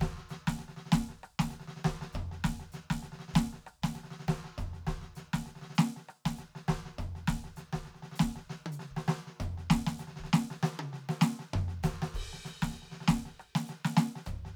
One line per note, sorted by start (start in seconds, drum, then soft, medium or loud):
0.01 kick medium
0.01 snare loud
0.08 kick soft
0.11 kick soft
0.18 snare soft
0.30 snare medium
0.30 hi-hat pedal soft
0.48 kick soft
0.48 snare loud
0.59 snare soft
0.69 snare soft
0.77 snare medium
0.86 snare soft
0.93 kick soft
0.93 snare loud
0.93 hi-hat pedal soft
1.00 kick soft
1.03 kick soft
1.10 snare soft
1.24 cross-stick medium
1.40 kick soft
1.40 snare loud
1.49 snare soft
1.49 hi-hat pedal soft
1.60 snare soft
1.68 snare medium
1.77 snare soft
1.85 kick soft
1.85 snare loud
2.02 snare medium
2.13 kick soft
2.13 floor tom loud
2.13 hi-hat pedal soft
2.21 kick soft
2.32 snare soft
2.45 kick soft
2.45 snare loud
2.52 kick soft
2.55 kick soft
2.60 snare soft
2.73 snare medium
2.73 hi-hat pedal soft
2.91 kick soft
2.91 snare medium
3.03 snare soft
3.13 snare soft
3.20 snare medium
3.29 snare medium
3.34 kick soft
3.34 snare loud
3.34 hi-hat pedal soft
3.40 kick soft
3.54 snare soft
3.67 cross-stick medium
3.83 kick soft
3.83 snare loud
3.94 snare soft
3.94 hi-hat pedal soft
4.04 snare soft
4.11 snare medium
4.20 snare medium
4.28 kick soft
4.28 snare loud
4.45 snare soft
4.59 kick soft
4.59 floor tom medium
4.59 hi-hat pedal soft
4.66 kick soft
4.68 kick soft
4.74 snare soft
4.88 kick soft
4.88 snare loud
4.94 kick soft
4.97 kick soft
5.02 snare soft
5.16 snare medium
5.16 hi-hat pedal soft
5.34 kick soft
5.34 snare medium
5.47 snare soft
5.56 snare soft
5.62 snare medium
5.70 snare soft
5.76 snare loud
5.76 hi-hat pedal soft
5.97 snare soft
6.09 cross-stick medium
6.26 kick soft
6.26 snare loud
6.37 snare soft
6.37 hi-hat pedal soft
6.56 snare medium
6.69 kick soft
6.69 snare loud
6.86 snare soft
6.99 kick soft
6.99 floor tom medium
6.99 hi-hat pedal soft
7.06 kick soft
7.16 snare soft
7.28 kick medium
7.28 snare loud
7.37 kick soft
7.45 snare soft
7.57 snare medium
7.57 hi-hat pedal soft
7.73 kick soft
7.73 snare medium
7.86 snare soft
7.95 snare soft
8.03 snare medium
8.12 snare soft
8.12 hi-hat pedal medium
8.20 kick soft
8.20 snare loud
8.28 kick soft
8.36 snare soft
8.50 snare medium
8.67 open hi-hat soft
8.67 high tom loud
8.73 hi-hat pedal medium
8.80 snare medium
8.91 kick soft
8.97 snare medium
9.09 snare loud
9.27 snare soft
9.41 kick soft
9.41 floor tom loud
9.41 hi-hat pedal soft
9.50 kick soft
9.58 snare soft
9.71 kick soft
9.71 snare loud
9.78 kick soft
9.87 snare medium
9.99 snare medium
9.99 hi-hat pedal soft
10.08 snare soft
10.14 snare soft
10.17 kick soft
10.17 snare medium
10.25 snare medium
10.34 snare loud
10.51 snare medium
10.64 snare loud
10.64 hi-hat pedal medium
10.80 high tom loud
10.94 snare medium
11.10 snare loud
11.22 snare loud
11.22 hi-hat pedal medium
11.40 snare medium
11.54 kick soft
11.54 floor tom loud
11.61 kick soft
11.64 kick soft
11.69 snare soft
11.84 kick soft
11.84 snare loud
11.84 hi-hat pedal medium
11.90 kick soft
12.03 snare loud
12.15 kick medium
12.15 crash medium
12.22 kick soft
12.34 snare soft
12.45 snare medium
12.45 hi-hat pedal soft
12.63 kick soft
12.63 snare loud
12.73 snare soft
12.83 snare soft
12.91 snare soft
12.92 snare medium
13.01 snare medium
13.08 kick soft
13.08 snare loud
13.08 hi-hat pedal medium
13.16 kick soft
13.26 snare soft
13.40 cross-stick medium
13.56 snare loud
13.67 snare medium
13.67 hi-hat pedal soft
13.85 snare loud
13.97 snare loud
14.16 snare medium
14.27 kick soft
14.27 hi-hat pedal soft
14.27 floor tom medium
14.46 snare soft